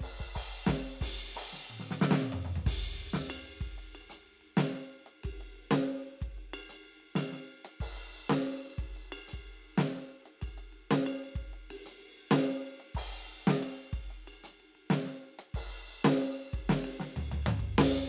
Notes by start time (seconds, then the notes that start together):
0.01 kick, crash
0.19 kick, crash
0.35 kick, crash
0.49 open hi-hat
0.67 kick, snare
1.01 kick, ride
1.36 hi-hat pedal, crash
1.53 snare
1.70 high tom
1.80 snare
1.91 snare
2.02 snare
2.11 snare
2.22 high tom
2.32 mid tom
2.45 mid tom
2.56 floor tom
2.67 kick, ride
2.91 kick
3.14 snare, hi-hat pedal
3.30 ride bell
3.46 closed hi-hat
3.61 kick, ride
3.78 closed hi-hat
3.95 ride bell
4.10 closed hi-hat
4.24 ride
4.41 ride
4.57 snare, hi-hat pedal, ride bell
4.74 snare
4.92 ride
5.06 closed hi-hat
5.24 kick, ride
5.41 closed hi-hat
5.56 ride
5.71 snare
5.90 cross-stick, ride
6.06 closed hi-hat
6.21 kick, ride
6.38 closed hi-hat
6.54 ride bell
6.69 closed hi-hat
6.84 ride
7.00 ride
7.16 snare, ride bell
7.32 snare
7.48 ride
7.65 closed hi-hat
7.81 kick, crash
7.97 closed hi-hat
8.11 ride
8.30 snare
8.48 ride
8.66 closed hi-hat
8.78 kick, ride
8.96 closed hi-hat
9.12 ride bell
9.28 closed hi-hat
9.33 kick
9.47 ride
9.61 ride
9.78 snare, ride
9.95 snare
10.09 ride
10.26 closed hi-hat
10.42 kick, ride bell
10.58 closed hi-hat
10.73 ride
10.91 snare
11.07 ride bell
11.24 closed hi-hat
11.36 kick, ride
11.53 closed hi-hat
11.71 ride
11.86 closed hi-hat
12.00 ride
12.17 ride
12.31 snare, ride bell
12.49 snare
12.65 ride
12.80 closed hi-hat
12.95 kick, crash
13.12 closed hi-hat
13.28 ride
13.47 snare
13.63 ride bell
13.81 closed hi-hat
13.93 kick, ride
14.11 closed hi-hat
14.28 ride bell
14.44 closed hi-hat
14.60 ride
14.75 ride
14.90 snare, ride bell
15.06 snare
15.24 ride
15.39 closed hi-hat
15.54 kick, crash
15.70 closed hi-hat
15.87 ride bell
16.05 snare
16.22 ride bell
16.40 closed hi-hat
16.53 kick, ride
16.69 snare
16.85 ride
17.00 snare
17.16 floor tom
17.32 floor tom
17.47 floor tom
17.59 kick
17.78 snare, ride
17.96 snare